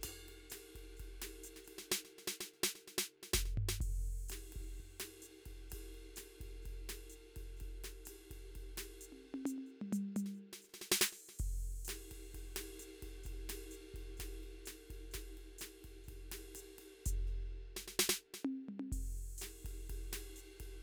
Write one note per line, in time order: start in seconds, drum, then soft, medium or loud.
0.01 kick soft
0.01 snare soft
0.01 hi-hat pedal soft
0.01 ride bell medium
0.28 ride soft
0.50 snare soft
0.50 hi-hat pedal medium
0.50 ride medium
0.75 kick soft
0.75 ride soft
0.97 kick soft
0.97 hi-hat pedal soft
0.97 ride soft
1.21 snare soft
1.21 ride medium
1.44 hi-hat pedal medium
1.44 ride soft
1.56 snare soft
1.64 hi-hat pedal soft
1.64 ride soft
1.78 snare soft
1.91 snare loud
1.91 hi-hat pedal medium
2.05 snare soft
2.18 snare soft
2.27 snare medium
2.40 snare medium
2.53 snare soft
2.63 snare loud
2.75 snare soft
2.88 snare soft
2.98 snare loud
3.23 snare soft
3.33 kick soft
3.33 snare loud
3.40 kick soft
3.45 snare soft
3.57 floor tom medium
3.69 snare medium
3.81 kick soft
3.81 crash medium
3.92 kick soft
4.28 snare soft
4.28 hi-hat pedal medium
4.28 ride medium
4.52 kick soft
4.52 ride soft
4.61 kick soft
4.74 hi-hat pedal soft
4.74 ride soft
4.80 kick soft
5.00 snare soft
5.00 ride medium
5.22 hi-hat pedal medium
5.22 ride soft
5.46 kick soft
5.46 ride soft
5.70 kick soft
5.70 snare soft
5.70 hi-hat pedal soft
5.70 ride medium
5.94 ride soft
6.16 snare soft
6.16 hi-hat pedal medium
6.16 ride medium
6.40 kick soft
6.40 ride soft
6.45 kick soft
6.62 kick soft
6.62 hi-hat pedal soft
6.62 ride soft
6.89 snare soft
6.89 ride medium
7.10 hi-hat pedal medium
7.14 ride soft
7.36 kick soft
7.36 ride soft
7.57 hi-hat pedal soft
7.57 ride soft
7.61 kick soft
7.84 snare soft
7.84 ride soft
8.05 snare soft
8.05 hi-hat pedal medium
8.05 ride medium
8.31 kick soft
8.31 ride soft
8.55 kick soft
8.55 ride soft
8.77 snare soft
8.77 ride medium
9.01 hi-hat pedal medium
9.12 high tom soft
9.25 high tom soft
9.34 high tom medium
9.45 hi-hat pedal medium
9.45 high tom loud
9.58 high tom soft
9.66 hi-hat pedal soft
9.81 mid tom medium
9.92 hi-hat pedal medium
9.92 mid tom loud
10.16 hi-hat pedal medium
10.16 mid tom loud
10.26 snare soft
10.34 hi-hat pedal soft
10.53 snare soft
10.62 snare soft
10.62 hi-hat pedal soft
10.69 snare soft
10.73 snare soft
10.81 snare soft
10.92 snare loud
10.92 hi-hat pedal medium
11.01 snare loud
11.12 snare soft
11.29 snare soft
11.39 kick soft
11.39 crash medium
11.46 kick soft
11.85 snare soft
11.85 hi-hat pedal medium
11.85 ride medium
11.89 snare soft
12.11 kick soft
12.11 ride soft
12.34 kick soft
12.34 ride soft
12.56 snare soft
12.56 ride medium
12.79 hi-hat pedal medium
12.79 ride soft
13.02 kick soft
13.02 ride soft
13.23 kick soft
13.23 hi-hat pedal soft
13.23 ride soft
13.30 kick soft
13.49 snare soft
13.49 ride medium
13.71 hi-hat pedal medium
13.71 ride soft
13.94 kick soft
13.94 ride soft
14.17 kick soft
14.17 snare soft
14.17 hi-hat pedal soft
14.17 ride medium
14.43 ride soft
14.54 snare soft
14.66 snare soft
14.66 hi-hat pedal medium
14.66 ride medium
14.90 kick soft
14.90 ride soft
15.11 kick soft
15.11 snare soft
15.11 hi-hat pedal soft
15.11 ride medium
15.37 ride soft
15.58 snare soft
15.58 hi-hat pedal medium
15.58 ride medium
15.84 kick soft
15.84 ride soft
16.04 hi-hat pedal soft
16.08 kick soft
16.08 ride soft
16.13 kick soft
16.32 snare soft
16.32 ride medium
16.55 hi-hat pedal medium
16.55 ride medium
16.78 ride soft
17.06 kick soft
17.06 hi-hat pedal loud
17.13 kick soft
17.27 snare soft
17.76 snare medium
17.88 snare soft
17.99 snare loud
18.34 snare soft
18.45 high tom loud
18.68 mid tom medium
18.79 high tom medium
18.92 kick soft
18.92 crash medium
18.98 kick soft
19.38 snare soft
19.38 hi-hat pedal medium
19.42 snare soft
19.42 ride medium
19.65 kick soft
19.65 ride soft
19.90 kick soft
19.90 ride medium
20.12 snare soft
20.12 ride medium
20.36 hi-hat pedal medium
20.36 ride soft
20.60 kick soft
20.60 ride soft